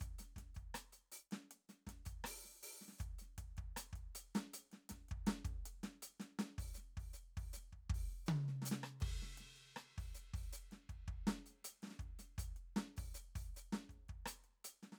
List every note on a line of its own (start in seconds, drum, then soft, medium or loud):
0.01 kick soft
0.01 closed hi-hat soft
0.01 hi-hat pedal soft
0.19 closed hi-hat soft
0.19 snare soft
0.36 kick soft
0.36 snare soft
0.36 closed hi-hat soft
0.55 closed hi-hat soft
0.55 kick soft
0.75 closed hi-hat medium
0.75 cross-stick medium
0.93 closed hi-hat soft
1.12 open hi-hat medium
1.31 snare soft
1.31 closed hi-hat soft
1.51 closed hi-hat soft
1.69 closed hi-hat soft
1.69 snare soft
1.87 kick soft
1.87 snare soft
1.87 closed hi-hat soft
2.06 closed hi-hat soft
2.06 kick soft
2.24 open hi-hat medium
2.24 cross-stick medium
2.45 snare soft
2.63 open hi-hat medium
2.82 snare soft
2.88 snare soft
2.93 snare soft
2.99 kick soft
2.99 closed hi-hat soft
2.99 hi-hat pedal soft
3.19 closed hi-hat soft
3.19 snare soft
3.38 kick soft
3.38 closed hi-hat soft
3.57 kick soft
3.57 closed hi-hat soft
3.77 closed hi-hat medium
3.77 cross-stick medium
3.93 kick soft
3.93 closed hi-hat soft
4.15 closed hi-hat medium
4.35 closed hi-hat soft
4.35 snare medium
4.54 closed hi-hat medium
4.72 snare soft
4.72 closed hi-hat soft
4.90 kick soft
4.90 snare soft
4.90 closed hi-hat medium
5.09 kick soft
5.09 closed hi-hat soft
5.27 snare medium
5.27 closed hi-hat soft
5.45 kick soft
5.45 closed hi-hat soft
5.66 closed hi-hat medium
5.84 snare soft
5.84 closed hi-hat soft
6.03 closed hi-hat medium
6.20 snare soft
6.20 closed hi-hat soft
6.39 snare soft
6.39 closed hi-hat soft
6.58 open hi-hat soft
6.58 kick soft
6.75 snare soft
6.75 hi-hat pedal soft
6.97 open hi-hat soft
6.97 kick soft
7.14 hi-hat pedal soft
7.37 open hi-hat soft
7.37 kick soft
7.54 snare soft
7.54 hi-hat pedal medium
7.73 kick soft
7.90 kick medium
7.94 open hi-hat soft
8.08 snare soft
8.12 snare soft
8.27 hi-hat pedal soft
8.27 high tom loud
8.48 snare soft
8.62 snare soft
8.62 hi-hat pedal loud
8.72 snare soft
8.84 cross-stick medium
9.01 kick medium
9.01 crash soft
9.23 snare soft
9.38 snare soft
9.38 closed hi-hat soft
9.56 closed hi-hat soft
9.77 cross-stick medium
9.77 closed hi-hat soft
9.98 open hi-hat soft
9.98 kick soft
10.15 snare soft
10.15 hi-hat pedal soft
10.34 open hi-hat soft
10.34 kick soft
10.53 hi-hat pedal medium
10.72 snare soft
10.72 closed hi-hat soft
10.90 kick soft
10.90 closed hi-hat soft
11.08 kick soft
11.08 closed hi-hat soft
11.27 snare medium
11.27 closed hi-hat soft
11.46 closed hi-hat soft
11.65 closed hi-hat medium
11.83 snare soft
11.83 closed hi-hat soft
11.87 snare soft
11.91 snare soft
12.00 kick soft
12.00 closed hi-hat soft
12.19 closed hi-hat soft
12.19 snare soft
12.38 closed hi-hat medium
12.38 kick soft
12.57 closed hi-hat soft
12.77 snare medium
12.77 closed hi-hat soft
12.97 open hi-hat soft
12.97 kick soft
13.15 hi-hat pedal medium
13.36 open hi-hat soft
13.36 kick soft
13.55 hi-hat pedal soft
13.55 open hi-hat soft
13.73 snare soft
13.73 closed hi-hat soft
13.90 kick soft
13.90 closed hi-hat soft
14.09 kick soft
14.09 closed hi-hat soft
14.26 closed hi-hat medium
14.26 cross-stick medium
14.44 closed hi-hat soft
14.65 closed hi-hat medium
14.83 snare soft
14.83 closed hi-hat soft
14.93 snare soft